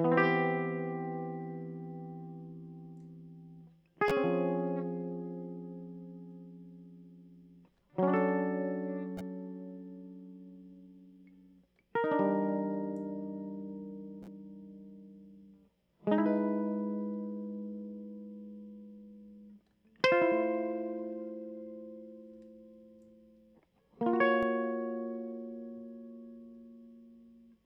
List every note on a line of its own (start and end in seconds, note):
0.00 3.69 E3
0.05 3.72 B3
0.12 3.65 C4
0.18 3.66 G4
4.02 7.29 G#4
4.10 7.63 C#4
4.17 7.71 C4
4.25 7.71 F3
7.99 11.65 F#3
7.99 11.63 C#4
8.08 11.54 D4
8.14 10.86 A4
11.96 15.67 A#4
12.04 15.49 D#4
12.12 15.71 D4
12.20 15.72 G3
16.08 19.60 G#3
16.08 19.56 D#4
16.19 19.51 E4
16.26 19.53 B4
20.04 23.59 C5
20.12 23.45 F4
20.22 23.68 E4
20.32 23.82 A3
24.02 27.58 A#3
24.07 27.60 F4
24.14 27.15 F#4
24.21 27.13 C#5